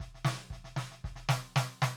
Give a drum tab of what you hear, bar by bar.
SD |ooooooooooo-o-o-|
BD |o---o---o-------|